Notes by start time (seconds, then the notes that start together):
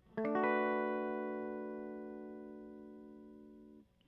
0.19 A3
0.26 D4
0.36 F#4
0.44 B4